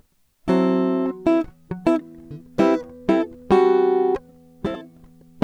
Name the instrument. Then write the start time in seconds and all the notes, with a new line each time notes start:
acoustic guitar
0.49 F#3 C4 E4 A4
1.28 C4 E4 A4
1.72 F#3
1.87 C4 E4 A4
2.60 G3 C4 E4 B4
3.10 G3 C4 E4 A4
3.52 G3 C4 F#4 A4
4.66 G3 C4 E4 A4